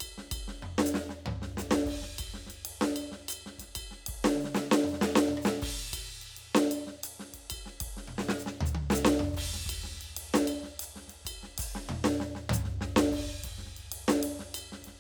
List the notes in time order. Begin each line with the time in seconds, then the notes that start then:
0.01 kick, ride bell
0.18 snare
0.32 kick, ride bell
0.39 kick
0.48 snare
0.63 mid tom
0.79 snare
0.86 hi-hat pedal
0.95 snare
1.10 snare
1.26 floor tom
1.42 snare
1.58 snare, hi-hat pedal
1.71 snare
1.86 kick, crash
1.92 kick
2.02 snare
2.19 kick, ride bell
2.34 snare
2.47 snare, ride bell
2.65 ride
2.82 snare
2.96 ride bell
3.12 snare
3.29 hi-hat pedal, ride bell
3.46 snare
3.59 kick, snare, ride bell
3.76 kick, ride bell
3.91 snare
4.07 kick, ride
4.15 kick
4.25 snare
4.36 high tom
4.41 snare, hi-hat pedal
4.55 snare
4.72 snare
4.84 hi-hat pedal, mid tom
4.93 snare
5.02 snare
5.10 hi-hat pedal
5.16 snare
5.28 mid tom
5.38 cross-stick
5.42 snare, hi-hat pedal
5.60 kick, hi-hat pedal, crash
5.75 kick
5.93 kick, ride bell
6.22 ride
6.37 ride
6.55 snare
6.72 ride bell
6.87 snare
7.04 hi-hat pedal, ride
7.20 snare
7.34 kick, ride
7.50 kick, hi-hat pedal, ride bell
7.66 snare
7.81 kick, ride
7.88 kick
7.97 snare
8.08 mid tom
8.19 snare
8.29 snare
8.39 hi-hat pedal
8.47 snare
8.61 floor tom
8.66 hi-hat pedal
8.75 high tom
8.91 snare
8.95 hi-hat pedal
9.05 snare
9.14 snare
9.20 mid tom
9.25 cross-stick
9.33 kick, hi-hat pedal
9.37 crash
9.54 snare
9.66 kick, ride bell
9.84 snare
9.93 snare
10.01 ride
10.17 ride
10.34 snare, hi-hat pedal
10.48 ride bell
10.63 snare
10.80 hi-hat pedal, ride
10.96 snare
11.08 kick, snare, ride
11.25 kick, hi-hat pedal, ride bell
11.43 snare
11.58 kick, hi-hat pedal, ride
11.75 snare
11.89 mid tom
12.05 snare
12.21 snare
12.36 snare
12.50 kick, hi-hat pedal, floor tom
12.64 snare
12.81 snare
12.97 snare
13.12 kick, crash
13.18 kick
13.29 cross-stick
13.44 kick, snare, ride, floor tom
13.58 snare
13.66 snare
13.73 snare
13.77 ride
13.92 ride
14.08 snare, hi-hat pedal
14.23 ride
14.40 snare
14.55 hi-hat pedal, ride bell
14.72 snare
14.82 kick, ride
14.87 snare